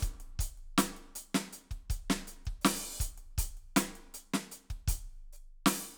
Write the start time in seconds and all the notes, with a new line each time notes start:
0.01 closed hi-hat, kick, hi-hat pedal
0.21 closed hi-hat
0.40 closed hi-hat, kick
0.58 closed hi-hat
0.78 closed hi-hat, snare
0.97 closed hi-hat
1.16 closed hi-hat
1.35 snare, closed hi-hat
1.53 closed hi-hat
1.71 kick, closed hi-hat
1.90 closed hi-hat, kick
2.10 snare, closed hi-hat
2.28 closed hi-hat
2.46 kick, closed hi-hat
2.62 open hi-hat, snare, hi-hat pedal
3.00 closed hi-hat, kick, hi-hat pedal
3.18 closed hi-hat
3.38 closed hi-hat, kick
3.58 closed hi-hat
3.77 closed hi-hat, snare
3.96 closed hi-hat
4.15 closed hi-hat
4.34 snare, closed hi-hat
4.52 closed hi-hat
4.71 kick, closed hi-hat
4.88 closed hi-hat, kick
5.33 hi-hat pedal
5.67 open hi-hat, snare